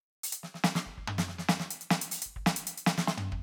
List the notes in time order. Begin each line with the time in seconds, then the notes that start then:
0.23 closed hi-hat
0.32 closed hi-hat
0.43 snare
0.54 snare
0.64 snare
0.75 snare
0.86 kick
0.98 kick
1.08 high tom
1.18 snare
1.38 snare
1.49 snare
1.60 snare
1.71 closed hi-hat
1.81 closed hi-hat
1.91 snare
2.01 closed hi-hat
2.11 closed hi-hat
2.22 kick, closed hi-hat
2.46 snare
2.56 closed hi-hat
2.67 closed hi-hat
2.78 closed hi-hat
2.86 snare
2.98 snare
3.08 snare
3.18 high tom
3.32 kick